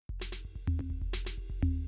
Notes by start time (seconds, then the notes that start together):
0.09 kick
0.20 snare, ride
0.32 snare, ride
0.45 kick
0.56 kick
0.68 floor tom, high tom
0.79 floor tom, high tom
0.90 kick
1.02 kick
1.13 snare, ride
1.25 snare, ride
1.38 kick
1.50 kick
1.63 floor tom, high tom